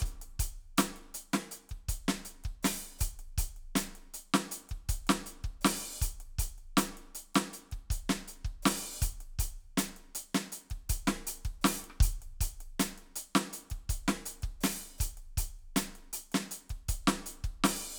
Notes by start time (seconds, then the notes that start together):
0.01 kick, hi-hat pedal
0.06 closed hi-hat
0.22 closed hi-hat
0.40 closed hi-hat, kick
0.78 closed hi-hat, snare
0.97 closed hi-hat
1.15 closed hi-hat
1.34 snare, closed hi-hat
1.52 closed hi-hat
1.70 kick, closed hi-hat
1.89 closed hi-hat, kick
2.09 snare
2.26 closed hi-hat
2.43 kick, snare, closed hi-hat
2.63 open hi-hat, snare, hi-hat pedal
2.99 closed hi-hat, kick, hi-hat pedal
3.20 closed hi-hat
3.38 closed hi-hat, kick
3.57 closed hi-hat
3.76 closed hi-hat, snare
3.96 closed hi-hat
4.15 closed hi-hat
4.35 snare
4.52 closed hi-hat
4.70 kick, closed hi-hat
4.90 closed hi-hat, kick
5.08 snare, closed hi-hat
5.27 closed hi-hat
5.45 kick, closed hi-hat
5.62 snare, hi-hat pedal
5.66 open hi-hat
6.01 closed hi-hat, kick, hi-hat pedal
6.21 closed hi-hat
6.39 closed hi-hat, kick
6.59 closed hi-hat
6.78 closed hi-hat, snare
6.98 closed hi-hat
7.15 closed hi-hat
7.35 snare, closed hi-hat
7.54 closed hi-hat
7.72 kick, closed hi-hat
7.91 closed hi-hat, kick
8.10 snare, closed hi-hat
8.28 closed hi-hat
8.45 kick, closed hi-hat
8.63 open hi-hat, snare, hi-hat pedal
9.02 closed hi-hat, kick, hi-hat pedal
9.21 closed hi-hat
9.40 closed hi-hat, kick
9.61 closed hi-hat
9.78 closed hi-hat, snare
9.97 closed hi-hat
10.16 closed hi-hat
10.35 snare, closed hi-hat
10.53 closed hi-hat
10.71 kick, closed hi-hat
10.90 closed hi-hat, kick
11.08 snare
11.28 closed hi-hat
11.45 kick, closed hi-hat
11.62 snare, hi-hat pedal
11.67 open hi-hat
11.83 kick, closed hi-hat
11.91 cross-stick
12.01 closed hi-hat, kick
12.23 closed hi-hat
12.41 closed hi-hat, kick
12.61 closed hi-hat
12.80 closed hi-hat, snare
12.98 closed hi-hat
13.16 closed hi-hat
13.36 snare, closed hi-hat
13.54 closed hi-hat
13.71 kick, closed hi-hat
13.90 closed hi-hat, kick
14.09 snare, closed hi-hat
14.26 closed hi-hat
14.43 kick, closed hi-hat
14.61 open hi-hat, snare, hi-hat pedal
14.99 closed hi-hat, kick, hi-hat pedal
15.18 closed hi-hat
15.38 closed hi-hat, kick
15.60 closed hi-hat
15.77 closed hi-hat, snare
15.96 closed hi-hat
16.14 closed hi-hat
16.32 snare, closed hi-hat
16.41 snare
16.52 closed hi-hat
16.70 kick, closed hi-hat
16.89 closed hi-hat, kick
17.08 snare
17.27 closed hi-hat
17.45 kick, closed hi-hat
17.65 open hi-hat, snare